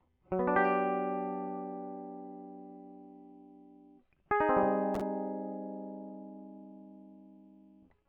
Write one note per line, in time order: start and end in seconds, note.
0.33 4.02 F#3
0.39 4.05 B3
0.47 4.01 D4
0.56 4.00 G4
4.31 7.26 G#4
4.41 7.88 D#4
4.49 7.91 C4
4.57 7.89 G3
4.65 4.70 C#3